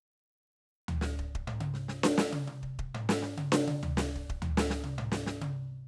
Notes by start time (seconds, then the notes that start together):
0.88 floor tom
1.01 snare
1.19 kick
1.35 kick
1.47 mid tom
1.60 high tom
1.74 snare
1.88 snare
2.03 snare
2.18 snare
2.32 high tom
2.48 high tom
2.63 kick
2.79 kick
2.95 mid tom
3.09 snare
3.22 snare
3.37 high tom
3.52 snare
3.68 high tom
3.83 floor tom
3.97 snare
4.15 kick
4.29 kick
4.42 floor tom
4.57 snare
4.70 snare
4.84 high tom
4.98 mid tom
5.12 snare
5.26 snare
5.42 high tom